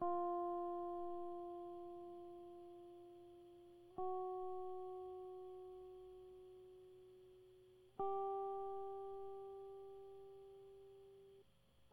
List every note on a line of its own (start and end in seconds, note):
0.02 3.90 F4
3.99 7.60 F#4
8.00 11.43 G4